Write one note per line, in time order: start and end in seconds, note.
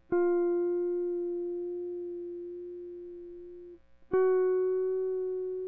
0.13 3.78 F4
4.14 5.69 F#4